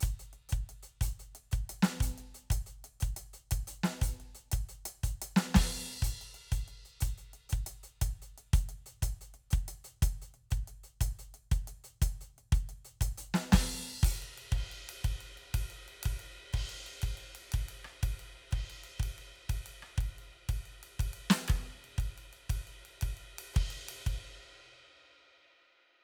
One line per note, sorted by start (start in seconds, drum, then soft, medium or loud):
0.01 closed hi-hat loud
0.01 kick medium
0.20 closed hi-hat medium
0.33 closed hi-hat soft
0.49 closed hi-hat medium
0.49 kick medium
0.70 closed hi-hat medium
0.83 closed hi-hat medium
1.01 closed hi-hat loud
1.01 kick medium
1.20 closed hi-hat medium
1.36 closed hi-hat medium
1.52 closed hi-hat medium
1.52 kick medium
1.70 closed hi-hat loud
1.83 snare loud
2.01 closed hi-hat loud
2.01 kick medium
2.18 closed hi-hat medium
2.35 closed hi-hat medium
2.51 kick medium
2.51 closed hi-hat loud
2.67 closed hi-hat medium
2.85 closed hi-hat medium
3.01 closed hi-hat loud
3.01 kick medium
3.17 closed hi-hat loud
3.34 closed hi-hat medium
3.51 kick medium
3.51 closed hi-hat loud
3.68 closed hi-hat loud
3.84 snare loud
4.02 open hi-hat loud
4.02 kick medium
4.21 closed hi-hat soft
4.35 closed hi-hat medium
4.52 kick medium
4.52 closed hi-hat loud
4.69 closed hi-hat medium
4.86 closed hi-hat loud
5.04 closed hi-hat loud
5.04 kick medium
5.22 closed hi-hat loud
5.37 snare loud
5.55 kick medium
5.55 snare loud
5.55 crash loud
6.03 closed hi-hat loud
6.03 kick medium
6.07 kick soft
6.22 closed hi-hat medium
6.35 closed hi-hat medium
6.52 closed hi-hat medium
6.52 kick medium
6.68 closed hi-hat soft
6.86 closed hi-hat soft
7.01 closed hi-hat loud
7.01 kick medium
7.18 closed hi-hat medium
7.34 closed hi-hat medium
7.50 closed hi-hat loud
7.50 kick medium
7.67 closed hi-hat loud
7.84 closed hi-hat medium
8.02 kick medium
8.02 closed hi-hat loud
8.22 closed hi-hat medium
8.38 closed hi-hat medium
8.54 closed hi-hat loud
8.54 kick loud
8.69 closed hi-hat medium
8.86 closed hi-hat medium
9.03 kick medium
9.03 closed hi-hat loud
9.21 closed hi-hat medium
9.34 closed hi-hat soft
9.51 closed hi-hat medium
9.51 kick medium
9.69 closed hi-hat medium
9.85 closed hi-hat medium
10.03 kick medium
10.03 closed hi-hat loud
10.22 closed hi-hat medium
10.34 closed hi-hat soft
10.51 closed hi-hat medium
10.51 kick medium
10.68 closed hi-hat medium
10.84 closed hi-hat medium
11.01 kick medium
11.01 closed hi-hat loud
11.19 closed hi-hat medium
11.35 closed hi-hat medium
11.52 closed hi-hat medium
11.52 kick medium
11.68 closed hi-hat medium
11.84 closed hi-hat medium
12.02 kick medium
12.02 closed hi-hat loud
12.21 closed hi-hat medium
12.39 closed hi-hat soft
12.53 closed hi-hat medium
12.53 kick medium
12.69 closed hi-hat medium
12.85 closed hi-hat medium
13.01 kick medium
13.01 closed hi-hat loud
13.18 closed hi-hat loud
13.35 snare loud
13.53 kick medium
13.53 snare loud
13.53 crash loud
14.03 open hi-hat loud
14.03 kick medium
14.03 ride loud
14.23 ride medium
14.38 ride medium
14.53 kick medium
14.53 ride medium
14.72 ride medium
14.90 ride loud
15.05 kick medium
15.05 ride medium
15.21 ride medium
15.38 ride soft
15.55 kick medium
15.55 ride loud
15.71 ride medium
15.89 ride medium
16.04 kick medium
16.04 ride loud
16.20 ride medium
16.53 kick medium
16.53 ride loud
16.70 ride medium
16.87 ride medium
17.02 kick medium
17.02 ride medium
17.18 ride medium
17.36 ride medium
17.53 kick medium
17.53 ride loud
17.69 ride medium
17.85 cross-stick medium
18.03 kick medium
18.03 ride loud
18.20 ride medium
18.52 kick medium
18.52 ride medium
18.71 ride medium
18.84 ride medium
19.00 kick medium
19.00 ride medium
19.19 ride soft
19.36 ride soft
19.50 kick medium
19.50 ride loud
19.67 ride medium
19.83 cross-stick medium
19.98 kick medium
19.98 ride medium
20.19 ride soft
20.34 ride soft
20.49 kick medium
20.49 ride medium
20.66 ride soft
20.84 ride medium
21.00 kick medium
21.00 ride loud
21.14 ride medium
21.31 snare loud
21.48 kick medium
21.48 cross-stick medium
21.48 ride loud
21.85 ride soft
21.99 kick medium
21.99 ride medium
22.18 ride medium
22.33 ride soft
22.50 kick medium
22.50 ride loud
22.68 ride soft
22.86 ride medium
23.02 kick medium
23.02 ride loud
23.18 ride soft
23.39 ride loud
23.54 kick medium
23.54 ride medium
23.71 ride medium
23.89 ride loud
24.07 kick medium
24.07 ride medium